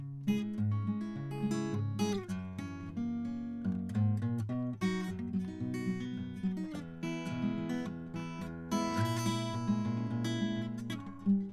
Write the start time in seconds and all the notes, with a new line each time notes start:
0.01 C#3
0.28 G#3 E4 G#4
0.59 G#2
0.72 C#4
0.88 G#3
1.01 E4
1.16 C#3
1.31 G#4
1.43 G#3
1.51 C#4 E4
1.73 G#2
1.99 G#3 E4 G#4
2.19 F#4
2.31 F#2
2.59 E3 C#4
2.85 E3
2.97 A#3
3.25 C#4
3.65 F#2
3.96 G#2
4.23 A#2
4.50 B2
4.82 F#3 D#4 F#4
5.09 F#2
5.19 B3
5.34 F#3
5.49 D#4
5.61 B2
5.74 F#4
5.87 F#3
6.01 B3
6.18 F#2
6.44 F#3
6.57 D#4
6.74 E2
7.03 E3 B3 E4
7.27 E2
7.32 B2
7.43 G#3
7.58 E3
7.70 B3
7.88 E2
8.15 E3 B3 E4
8.43 E2
8.72 A#3 B3 E4
8.98 A#2
9.06 E4
9.17 E4
9.26 G#3 E4
9.55 A#2
9.68 G#3
9.86 A#2
9.98 C#4
10.12 A#2
10.25 E4
10.41 G#3
10.57 A#2
10.90 C#4 E4
10.97 E2
11.22 D#3
11.27 G3